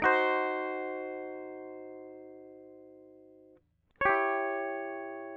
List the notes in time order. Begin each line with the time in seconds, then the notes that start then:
0.00 A3 D#4 F#4
0.06 C5
4.01 C#5
4.06 E4 G4